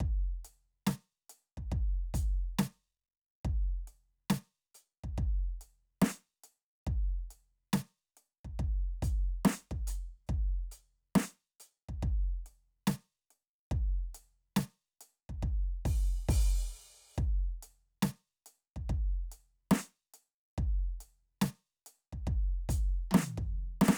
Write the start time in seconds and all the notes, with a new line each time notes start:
0.01 kick
0.46 closed hi-hat
0.88 snare
1.30 closed hi-hat
1.58 kick
1.73 kick
2.15 closed hi-hat, kick
2.59 snare
3.46 kick
3.88 closed hi-hat
4.31 snare
4.75 closed hi-hat
5.04 kick
5.19 kick, crash, ride
5.62 closed hi-hat
6.03 snare
6.44 closed hi-hat
6.88 kick
7.31 closed hi-hat
7.74 snare
8.18 closed hi-hat
8.45 kick
8.60 kick
9.03 closed hi-hat, kick
9.46 snare
9.72 kick
9.88 closed hi-hat, cross-stick
10.28 kick, hi-hat pedal
10.72 closed hi-hat
11.16 snare
11.61 closed hi-hat
11.89 kick
12.03 kick, crash, ride
12.47 closed hi-hat
12.88 snare
13.31 closed hi-hat
13.72 kick, crash
14.15 closed hi-hat
14.57 snare
15.02 closed hi-hat
15.30 kick
15.43 kick, crash
15.86 open hi-hat, kick, cross-stick
16.29 open hi-hat, kick
17.16 kick, hi-hat pedal
17.21 crash
17.63 closed hi-hat
18.03 snare
18.47 closed hi-hat
18.77 kick
18.90 kick, crash, ride
19.33 closed hi-hat
19.72 snare
20.15 closed hi-hat
20.59 kick, snare, crash, ride
21.01 closed hi-hat
21.42 snare
21.87 closed hi-hat
22.13 kick
22.28 kick, crash, ride
22.70 closed hi-hat, kick
23.12 snare, high tom
23.38 kick
23.82 snare
23.89 snare